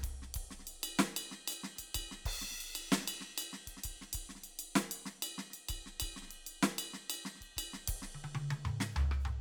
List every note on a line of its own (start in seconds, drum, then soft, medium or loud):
0.01 kick soft
0.01 hi-hat pedal soft
0.01 ride medium
0.09 kick soft
0.22 snare soft
0.34 kick soft
0.34 ride loud
0.43 kick soft
0.51 snare soft
0.59 snare soft
0.67 ride bell medium
0.83 ride bell loud
0.99 snare loud
1.17 ride bell loud
1.32 snare soft
1.48 hi-hat pedal medium
1.48 ride bell loud
1.64 snare medium
1.76 kick soft
1.76 snare soft
1.76 ride bell medium
1.95 kick soft
1.95 ride bell loud
2.01 kick soft
2.11 snare soft
2.26 kick soft
2.26 crash loud
2.33 kick soft
2.42 snare soft
2.51 snare soft
2.61 ride bell medium
2.75 ride bell loud
2.92 snare loud
3.01 snare soft
3.08 ride bell loud
3.21 snare soft
3.38 hi-hat pedal medium
3.38 ride bell loud
3.53 snare soft
3.67 kick soft
3.67 ride medium
3.77 snare soft
3.84 kick soft
3.84 ride bell medium
3.90 kick soft
4.01 snare soft
4.13 kick soft
4.13 ride bell loud
4.29 snare soft
4.35 snare soft
4.40 snare soft
4.40 ride bell medium
4.45 snare soft
4.59 ride bell medium
4.76 snare loud
4.76 hi-hat pedal medium
4.91 ride bell medium
5.06 snare medium
5.23 hi-hat pedal medium
5.23 ride bell loud
5.38 snare medium
5.50 snare soft
5.50 ride bell medium
5.69 kick soft
5.69 ride bell loud
5.76 kick soft
5.86 snare soft
6.00 kick soft
6.00 ride bell loud
6.16 snare soft
6.22 snare soft
6.27 snare soft
6.31 snare soft
6.31 ride medium
6.35 snare soft
6.47 ride bell medium
6.63 snare loud
6.79 ride bell loud
6.94 snare soft
7.10 hi-hat pedal medium
7.10 ride bell loud
7.25 snare medium
7.36 snare soft
7.41 kick soft
7.41 ride soft
7.57 kick soft
7.57 ride bell loud
7.74 snare soft
7.88 kick soft
7.88 ride loud
7.96 kick soft
8.02 snare soft
8.15 high tom medium
8.24 high tom medium
8.35 high tom loud
8.51 high tom medium
8.65 mid tom loud
8.80 snare medium
8.92 hi-hat pedal soft
8.96 floor tom loud
9.11 cross-stick medium
9.20 hi-hat pedal soft
9.25 mid tom medium